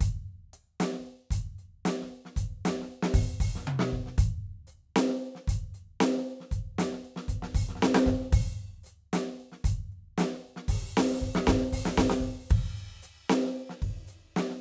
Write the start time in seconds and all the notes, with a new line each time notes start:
0.01 closed hi-hat, kick
0.54 closed hi-hat
0.80 closed hi-hat, snare
0.92 snare
0.97 kick, snare
1.06 closed hi-hat
1.31 closed hi-hat, kick
1.59 closed hi-hat
1.86 closed hi-hat, snare
2.02 kick, snare
2.05 snare
2.26 snare
2.37 closed hi-hat, kick
2.65 closed hi-hat, snare
2.82 snare
2.90 closed hi-hat
3.03 snare
3.14 open hi-hat, kick
3.40 open hi-hat, kick
3.56 snare
3.59 snare
3.64 snare, hi-hat pedal, high tom
3.80 snare
3.93 kick
4.06 snare
4.18 open hi-hat, kick
4.67 hi-hat pedal
4.96 closed hi-hat, snare
5.09 snare
5.12 snare
5.35 snare
5.48 closed hi-hat, kick
5.74 closed hi-hat
6.01 closed hi-hat, snare
6.18 snare
6.40 snare
6.52 closed hi-hat, kick
6.79 closed hi-hat, snare
6.93 snare
7.05 closed hi-hat
7.16 snare
7.28 closed hi-hat, kick
7.43 snare
7.55 open hi-hat, kick
7.69 snare
7.76 snare
7.80 snare, hi-hat pedal
7.83 snare
7.95 snare
8.07 kick, snare
8.20 snare
8.33 open hi-hat, kick
8.84 closed hi-hat, hi-hat pedal
9.13 closed hi-hat, snare
9.32 snare
9.40 kick, closed hi-hat
9.52 snare
9.65 closed hi-hat, kick
9.92 closed hi-hat
10.18 closed hi-hat, snare
10.21 snare
10.34 snare
10.45 kick
10.57 snare
10.68 open hi-hat, kick
10.97 open hi-hat, snare
11.12 snare
11.16 snare
11.21 open hi-hat, kick, snare
11.35 snare
11.47 kick, snare
11.60 cross-stick
11.64 cross-stick
11.73 open hi-hat, kick
11.86 snare
11.98 kick, snare
12.10 snare
12.21 kick
12.50 kick, crash
13.03 hi-hat pedal
13.30 snare, crash
13.45 snare
13.70 snare
13.82 kick, crash
14.08 hi-hat pedal
14.37 snare, crash
14.50 snare